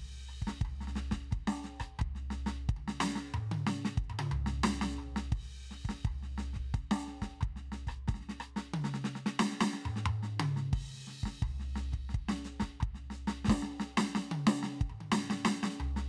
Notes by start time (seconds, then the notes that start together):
0.29 cross-stick
0.42 kick
0.47 snare
0.62 kick, floor tom
0.81 snare
0.88 snare
0.95 snare, hi-hat pedal
1.12 kick, snare
1.32 kick, snare
1.48 snare
1.64 snare, hi-hat pedal
1.80 kick, cross-stick
1.99 kick, floor tom
2.16 snare
2.31 snare, hi-hat pedal
2.47 snare
2.70 kick
2.77 kick, high tom
2.88 snare
3.01 snare
3.16 snare
3.34 mid tom
3.52 high tom
3.67 snare
3.85 snare
3.98 kick
4.04 kick
4.10 mid tom
4.20 high tom
4.32 floor tom
4.47 snare
4.64 snare
4.82 snare
4.99 floor tom
5.17 snare
5.33 kick, crash
5.70 snare, hi-hat pedal
5.85 kick
5.89 snare
6.05 kick, floor tom
6.23 snare
6.38 snare, hi-hat pedal
6.54 kick, snare
6.75 kick, snare
6.92 snare
7.07 snare, hi-hat pedal
7.22 kick, snare
7.41 kick, floor tom
7.57 snare
7.72 snare, hi-hat pedal
7.88 kick, cross-stick
8.08 kick, snare
8.15 snare
8.21 snare
8.29 snare
8.41 cross-stick
8.57 snare
8.74 high tom
8.85 snare
8.95 snare
9.05 snare
9.16 snare
9.27 snare
9.40 snare
9.52 snare
9.61 snare
9.74 snare
9.86 mid tom
9.96 snare
10.06 mid tom
10.23 snare
10.40 high tom
10.57 snare
10.73 kick, snare, crash
10.83 snare
11.08 snare
11.24 kick, snare
11.43 kick, floor tom
11.60 snare
11.76 snare, hi-hat pedal
11.93 kick, snare
12.10 snare
12.15 kick
12.29 snare
12.45 snare, hi-hat pedal
12.60 kick, snare
12.81 kick, floor tom
12.95 snare
13.11 snare, hi-hat pedal
13.28 snare
13.45 kick, snare
13.50 snare
13.63 snare
13.80 snare
13.98 snare
14.16 snare
14.32 high tom
14.47 snare
14.63 snare
14.81 kick
14.90 kick, mid tom
15.01 high tom
15.12 snare
15.31 snare
15.46 snare
15.64 snare
15.80 floor tom
15.97 snare